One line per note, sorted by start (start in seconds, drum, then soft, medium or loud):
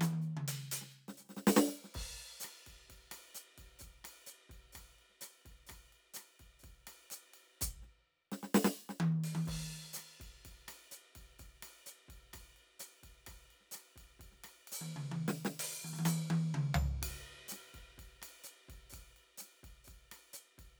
0.01 hi-hat pedal medium
0.01 high tom loud
0.13 high tom soft
0.22 hi-hat pedal soft
0.37 mid tom medium
0.48 closed hi-hat loud
0.48 hi-hat pedal medium
0.71 closed hi-hat loud
0.71 hi-hat pedal medium
0.81 snare soft
0.90 hi-hat pedal soft
1.08 snare soft
1.17 snare soft
1.17 hi-hat pedal soft
1.25 snare soft
1.29 snare soft
1.37 snare soft
1.47 snare loud
1.47 hi-hat pedal medium
1.57 snare loud
1.68 snare soft
1.84 snare soft
1.94 kick soft
1.94 crash medium
2.02 kick soft
2.40 snare soft
2.40 hi-hat pedal medium
2.40 ride medium
2.44 cross-stick soft
2.67 kick soft
2.67 ride soft
2.90 kick soft
2.90 ride soft
3.11 cross-stick soft
3.11 snare soft
3.11 ride medium
3.35 hi-hat pedal medium
3.35 ride soft
3.58 kick soft
3.58 ride soft
3.79 kick soft
3.79 hi-hat pedal soft
3.79 ride soft
3.86 kick soft
4.04 cross-stick soft
4.04 snare soft
4.04 ride medium
4.26 hi-hat pedal medium
4.26 ride soft
4.50 kick soft
4.50 ride soft
4.72 kick soft
4.72 cross-stick soft
4.72 snare soft
4.72 hi-hat pedal soft
4.72 ride medium
4.99 ride soft
5.10 snare soft
5.21 cross-stick soft
5.21 hi-hat pedal medium
5.21 ride medium
5.45 kick soft
5.45 ride soft
5.67 kick soft
5.67 cross-stick soft
5.67 hi-hat pedal soft
5.67 ride medium
5.93 ride soft
6.14 cross-stick soft
6.14 snare soft
6.14 hi-hat pedal medium
6.14 ride medium
6.40 kick soft
6.40 ride soft
6.59 hi-hat pedal soft
6.64 kick soft
6.64 ride soft
6.68 kick soft
6.87 cross-stick soft
6.87 ride medium
7.10 hi-hat pedal medium
7.10 ride medium
7.34 ride soft
7.61 kick soft
7.61 hi-hat pedal loud
7.68 kick soft
7.82 snare soft
8.32 snare medium
8.43 snare soft
8.55 snare loud
8.89 snare soft
9.00 high tom loud
9.24 closed hi-hat medium
9.35 high tom medium
9.47 kick soft
9.47 crash medium
9.53 kick soft
9.93 cross-stick soft
9.93 hi-hat pedal medium
9.97 cross-stick soft
9.97 ride medium
10.20 kick soft
10.20 ride soft
10.45 kick soft
10.45 ride medium
10.68 cross-stick soft
10.68 snare soft
10.68 ride medium
10.91 hi-hat pedal medium
10.91 ride soft
11.15 kick soft
11.15 ride soft
11.39 kick soft
11.39 hi-hat pedal soft
11.39 ride soft
11.63 cross-stick soft
11.63 ride medium
11.86 hi-hat pedal medium
11.86 ride soft
12.08 kick soft
12.08 ride soft
12.33 kick soft
12.33 cross-stick soft
12.33 snare soft
12.33 ride medium
12.56 ride soft
12.80 cross-stick soft
12.80 hi-hat pedal medium
12.80 ride medium
13.03 kick soft
13.03 ride soft
13.27 kick soft
13.27 cross-stick soft
13.27 snare soft
13.27 ride medium
13.51 ride soft
13.61 snare soft
13.71 cross-stick soft
13.71 hi-hat pedal medium
13.71 ride medium
13.96 kick soft
13.96 ride soft
14.19 kick soft
14.19 ride soft
14.24 kick soft
14.32 snare soft
14.44 cross-stick soft
14.44 ride medium
14.67 ride medium
14.72 hi-hat pedal medium
14.81 high tom soft
14.96 mid tom medium
15.12 high tom medium
15.28 snare medium
15.45 snare medium
15.59 closed hi-hat loud
15.84 high tom soft
15.93 high tom soft
15.99 high tom medium
16.05 hi-hat pedal loud
16.05 high tom medium
16.30 high tom loud
16.54 mid tom loud
16.75 floor tom loud
17.02 kick soft
17.02 ride loud
17.07 kick soft
17.48 snare soft
17.48 hi-hat pedal medium
17.48 ride medium
17.74 kick soft
17.74 ride soft
17.98 kick soft
17.98 ride soft
18.22 cross-stick soft
18.22 ride medium
18.44 hi-hat pedal medium
18.44 ride soft
18.69 kick soft
18.69 ride soft
18.74 kick soft
18.90 kick soft
18.90 hi-hat pedal soft
18.94 kick soft
18.94 ride medium
19.16 ride soft
19.38 snare soft
19.38 hi-hat pedal medium
19.38 ride medium
19.63 kick soft
19.63 ride soft
19.84 kick soft
19.84 hi-hat pedal soft
19.84 ride soft
20.12 cross-stick soft
20.12 ride medium
20.33 hi-hat pedal medium
20.33 ride soft
20.58 kick soft
20.58 ride soft